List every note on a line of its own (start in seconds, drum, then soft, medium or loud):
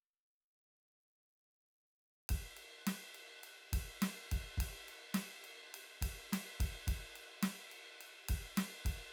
2.29 kick medium
2.29 ride loud
2.57 ride medium
2.87 snare medium
2.87 ride loud
3.15 ride medium
3.43 ride medium
3.73 kick medium
3.73 ride loud
4.02 snare medium
4.02 ride loud
4.31 kick medium
4.31 ride loud
4.57 kick medium
4.57 ride loud
4.88 ride medium
5.14 snare medium
5.14 ride loud
5.44 ride medium
5.74 ride medium
6.01 kick medium
6.01 ride loud
6.32 snare medium
6.32 ride loud
6.60 kick medium
6.60 ride loud
6.87 kick medium
6.87 ride loud
7.15 ride medium
7.43 snare medium
7.43 ride loud
7.71 ride medium
8.01 ride medium
8.29 kick medium
8.29 ride loud
8.57 snare medium
8.57 ride loud
8.85 kick medium
8.85 ride loud